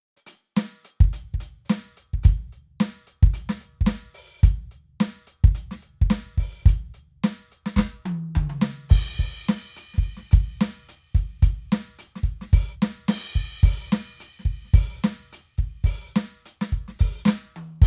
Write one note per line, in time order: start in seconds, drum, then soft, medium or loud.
0.17 hi-hat pedal medium
0.27 closed hi-hat loud
0.56 closed hi-hat loud
0.56 snare loud
0.56 hi-hat pedal medium
0.85 closed hi-hat medium
1.00 kick loud
1.13 closed hi-hat loud
1.34 kick medium
1.40 closed hi-hat loud
1.65 hi-hat pedal medium
1.70 closed hi-hat loud
1.70 snare loud
1.97 closed hi-hat medium
2.13 kick medium
2.24 closed hi-hat loud
2.24 kick loud
2.53 closed hi-hat soft
2.80 closed hi-hat loud
2.80 snare loud
3.07 closed hi-hat medium
3.23 kick loud
3.34 closed hi-hat loud
3.49 snare medium
3.61 closed hi-hat medium
3.81 kick medium
3.87 closed hi-hat loud
3.87 snare loud
4.14 open hi-hat loud
4.39 kick loud
4.39 hi-hat pedal medium
4.43 closed hi-hat loud
4.71 closed hi-hat medium
5.00 closed hi-hat loud
5.00 snare loud
5.27 closed hi-hat medium
5.44 kick loud
5.55 closed hi-hat loud
5.71 snare medium
5.82 closed hi-hat medium
6.02 kick loud
6.10 closed hi-hat loud
6.10 snare loud
6.38 open hi-hat loud
6.38 kick medium
6.62 kick loud
6.62 hi-hat pedal medium
6.67 closed hi-hat loud
6.94 closed hi-hat medium
7.24 closed hi-hat loud
7.24 snare loud
7.52 closed hi-hat medium
7.66 snare medium
7.76 kick medium
7.76 snare medium
7.78 snare loud
8.06 high tom loud
8.35 kick medium
8.35 mid tom loud
8.50 mid tom soft
8.50 high tom medium
8.62 snare loud
8.89 kick loud
8.89 crash loud
9.19 open hi-hat medium
9.19 kick medium
9.45 snare loud
9.45 hi-hat pedal medium
9.77 closed hi-hat loud
9.94 snare soft
9.98 kick medium
10.03 closed hi-hat medium
10.17 snare soft
10.31 closed hi-hat loud
10.31 kick loud
10.61 closed hi-hat loud
10.61 snare loud
10.89 closed hi-hat loud
11.15 closed hi-hat medium
11.15 kick medium
11.42 closed hi-hat loud
11.42 kick loud
11.72 snare loud
11.99 closed hi-hat loud
12.16 snare medium
12.23 closed hi-hat medium
12.23 kick medium
12.41 snare soft
12.53 open hi-hat loud
12.53 kick loud
12.72 hi-hat pedal medium
12.82 snare loud
13.08 snare loud
13.08 hi-hat pedal soft
13.08 crash loud
13.35 closed hi-hat medium
13.35 kick medium
13.63 open hi-hat loud
13.63 kick loud
13.87 hi-hat pedal medium
13.92 snare loud
14.20 closed hi-hat loud
14.39 snare soft
14.45 kick medium
14.45 closed hi-hat soft
14.65 snare soft
14.74 open hi-hat loud
14.74 kick loud
14.98 hi-hat pedal soft
15.04 snare loud
15.33 closed hi-hat loud
15.58 closed hi-hat soft
15.58 kick medium
15.84 open hi-hat loud
15.84 kick medium
16.08 hi-hat pedal soft
16.16 snare loud
16.46 closed hi-hat loud
16.61 snare medium
16.72 closed hi-hat medium
16.72 kick medium
16.88 snare soft
16.99 open hi-hat loud
16.99 kick loud
17.20 hi-hat pedal soft
17.25 snare loud
17.28 snare loud
17.56 high tom medium
17.82 kick loud
17.82 crash loud